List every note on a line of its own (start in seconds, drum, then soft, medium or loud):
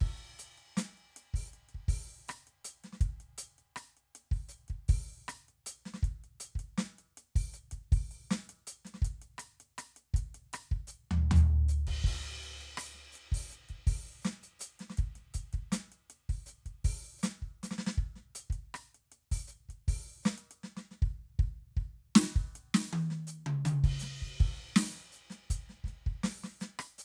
0.01 kick soft
0.01 crash soft
0.39 closed hi-hat medium
0.58 closed hi-hat soft
0.77 closed hi-hat medium
0.77 snare medium
0.98 closed hi-hat soft
1.17 closed hi-hat soft
1.34 open hi-hat medium
1.34 kick soft
1.48 hi-hat pedal soft
1.54 closed hi-hat soft
1.69 closed hi-hat soft
1.75 kick soft
1.89 open hi-hat medium
1.89 kick soft
2.28 cross-stick medium
2.28 closed hi-hat soft
2.28 hi-hat pedal soft
2.47 closed hi-hat soft
2.65 closed hi-hat medium
2.84 snare soft
2.84 closed hi-hat soft
2.93 snare soft
3.01 kick medium
3.01 closed hi-hat soft
3.20 closed hi-hat soft
3.38 closed hi-hat medium
3.59 closed hi-hat soft
3.76 cross-stick medium
3.76 closed hi-hat soft
3.97 closed hi-hat soft
4.15 closed hi-hat soft
4.32 kick soft
4.32 open hi-hat soft
4.49 hi-hat pedal medium
4.68 kick soft
4.68 closed hi-hat soft
4.89 open hi-hat medium
4.89 kick medium
5.29 cross-stick medium
5.29 closed hi-hat soft
5.29 hi-hat pedal soft
5.49 closed hi-hat soft
5.67 closed hi-hat medium
5.86 snare soft
5.86 closed hi-hat soft
5.94 snare soft
6.03 kick soft
6.03 closed hi-hat soft
6.24 closed hi-hat soft
6.40 closed hi-hat medium
6.56 kick soft
6.56 closed hi-hat soft
6.78 snare medium
6.78 closed hi-hat soft
6.99 closed hi-hat soft
7.18 closed hi-hat soft
7.36 kick soft
7.36 open hi-hat medium
7.54 hi-hat pedal soft
7.54 open hi-hat soft
7.72 kick soft
7.72 closed hi-hat soft
7.92 kick medium
7.92 open hi-hat soft
8.11 open hi-hat soft
8.31 snare medium
8.31 hi-hat pedal soft
8.31 open hi-hat medium
8.50 closed hi-hat soft
8.67 closed hi-hat medium
8.85 snare soft
8.85 closed hi-hat soft
8.94 snare soft
9.02 kick soft
9.02 closed hi-hat medium
9.22 closed hi-hat soft
9.39 cross-stick medium
9.39 closed hi-hat medium
9.60 closed hi-hat soft
9.78 cross-stick medium
9.78 closed hi-hat medium
9.97 closed hi-hat soft
10.14 kick soft
10.14 closed hi-hat medium
10.35 closed hi-hat soft
10.53 cross-stick medium
10.53 closed hi-hat medium
10.72 kick soft
10.88 hi-hat pedal medium
11.11 floor tom loud
11.31 floor tom loud
11.36 hi-hat pedal medium
11.69 hi-hat pedal medium
11.87 kick soft
11.87 ride medium
12.04 kick medium
12.04 crash medium
12.44 closed hi-hat soft
12.61 closed hi-hat soft
12.78 open hi-hat medium
12.78 cross-stick medium
12.95 snare soft
12.95 open hi-hat soft
13.12 closed hi-hat soft
13.12 hi-hat pedal soft
13.32 open hi-hat medium
13.32 kick soft
13.50 closed hi-hat soft
13.50 hi-hat pedal medium
13.69 kick soft
13.69 closed hi-hat soft
13.87 open hi-hat medium
13.87 kick medium
14.05 open hi-hat soft
14.22 snare medium
14.22 closed hi-hat soft
14.22 hi-hat pedal soft
14.43 closed hi-hat soft
14.60 closed hi-hat medium
14.60 hi-hat pedal soft
14.80 snare soft
14.80 closed hi-hat soft
14.90 snare soft
14.98 kick soft
14.98 closed hi-hat soft
15.16 snare soft
15.16 closed hi-hat soft
15.34 closed hi-hat medium
15.34 kick soft
15.53 kick soft
15.53 closed hi-hat soft
15.72 closed hi-hat medium
15.72 snare medium
15.92 closed hi-hat soft
16.10 closed hi-hat soft
16.30 kick soft
16.30 open hi-hat soft
16.46 closed hi-hat soft
16.46 hi-hat pedal medium
16.66 kick soft
16.66 closed hi-hat soft
16.85 open hi-hat medium
16.85 kick soft
17.19 hi-hat pedal soft
17.23 closed hi-hat medium
17.23 snare medium
17.42 kick soft
17.63 snare soft
17.63 hi-hat pedal medium
17.71 snare soft
17.79 snare soft
17.87 snare medium
17.98 kick soft
18.16 snare soft
18.35 closed hi-hat medium
18.50 kick soft
18.50 closed hi-hat soft
18.75 cross-stick medium
18.95 closed hi-hat soft
19.12 closed hi-hat soft
19.32 open hi-hat medium
19.32 kick soft
19.48 hi-hat pedal medium
19.69 kick soft
19.69 closed hi-hat soft
19.88 open hi-hat medium
19.88 kick soft
20.23 snare medium
20.23 hi-hat pedal soft
20.38 closed hi-hat soft
20.51 closed hi-hat soft
20.64 snare soft
20.77 snare soft
20.91 snare soft
21.02 kick medium
21.39 kick medium
21.77 kick soft
22.16 snare loud
22.23 snare soft
22.36 kick soft
22.56 closed hi-hat soft
22.75 snare medium
22.93 high tom loud
23.11 snare soft
23.28 hi-hat pedal medium
23.47 mid tom loud
23.66 hi-hat pedal medium
23.66 mid tom loud
23.84 kick medium
23.84 ride medium
24.00 snare soft
24.00 hi-hat pedal medium
24.22 kick soft
24.40 kick medium
24.40 crash soft
24.76 open hi-hat medium
24.76 snare loud
25.12 hi-hat pedal soft
25.17 closed hi-hat soft
25.30 snare soft
25.30 closed hi-hat soft
25.50 closed hi-hat medium
25.50 kick soft
25.70 snare soft
25.84 kick soft
25.84 snare soft
25.88 closed hi-hat soft
26.07 kick soft
26.24 open hi-hat medium
26.24 snare medium
26.44 snare soft
26.61 snare soft
26.61 hi-hat pedal soft
26.79 cross-stick medium
26.99 hi-hat pedal medium